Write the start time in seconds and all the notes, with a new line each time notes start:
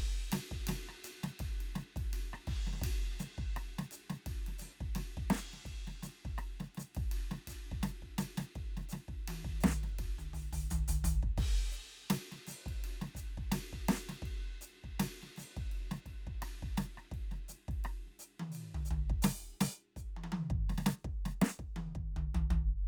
0.01 kick
0.32 snare, ride
0.51 kick
0.67 snare, ride
0.89 cross-stick
0.93 cross-stick
1.04 hi-hat pedal, ride
1.24 snare
1.40 kick, ride
1.61 ride
1.76 snare
1.96 kick, ride
2.13 ride
2.33 cross-stick
2.47 kick, ride
2.67 snare
2.73 snare
2.78 kick, snare
2.84 ride
3.19 snare, hi-hat pedal, ride
3.38 kick
3.57 cross-stick, ride
3.79 snare
3.91 kick, hi-hat pedal, ride
4.10 snare
4.26 kick, ride
4.47 snare, ride
4.59 snare, hi-hat pedal, ride
4.81 kick
4.95 snare, ride
5.17 kick
5.30 snare, ride
5.53 snare
5.65 kick, ride
5.87 snare
6.03 snare, hi-hat pedal, ride
6.25 kick, ride
6.38 cross-stick, ride
6.60 snare
6.75 snare, ride
6.79 hi-hat pedal
6.95 kick, ride
7.12 ride
7.31 snare
7.47 kick, hi-hat pedal, ride
7.72 kick
7.83 snare, ride
8.02 kick
8.18 snare, hi-hat pedal, ride
8.38 snare
8.56 kick, ride
8.77 snare
8.89 snare, hi-hat pedal, ride
9.08 kick
9.28 high tom, ride
9.45 kick
9.61 snare, floor tom, hi-hat pedal
9.83 snare
9.99 kick, ride
10.19 open hi-hat, floor tom
10.34 open hi-hat, floor tom
10.53 open hi-hat, floor tom
10.71 open hi-hat, floor tom
10.88 open hi-hat, floor tom
11.04 open hi-hat, floor tom
11.23 kick
11.38 kick, crash, ride
11.72 hi-hat pedal
12.10 snare, ride
12.32 snare
12.47 snare, hi-hat pedal, ride
12.66 kick, ride
12.84 ride
13.02 snare
13.15 kick, hi-hat pedal, ride
13.38 kick
13.52 snare, ride
13.73 kick
13.89 snare, ride
14.09 snare
14.22 kick, ride
14.61 hi-hat pedal, ride
14.84 kick
15.00 snare, ride
15.23 snare
15.37 snare, hi-hat pedal, ride
15.57 kick, ride
15.72 ride
15.91 snare
16.06 kick, ride
16.27 kick
16.42 cross-stick, ride
16.63 kick
16.78 snare, ride
16.98 cross-stick
17.12 kick, ride
17.31 snare
17.49 snare, hi-hat pedal, ride
17.68 kick, ride
17.84 cross-stick, ride
18.07 snare
18.19 hi-hat pedal, ride
18.40 high tom
18.52 hi-hat pedal, ride
18.75 floor tom
18.85 hi-hat pedal
18.91 floor tom
19.10 kick
19.22 open hi-hat, snare
19.61 open hi-hat, snare
19.97 kick, hi-hat pedal
20.17 high tom
20.24 high tom
20.32 high tom
20.50 kick
20.70 snare
20.78 snare
20.86 snare
21.05 kick
21.26 snare
21.42 snare
21.59 kick
21.76 closed hi-hat, high tom
21.95 kick
22.17 floor tom
22.35 floor tom
22.51 floor tom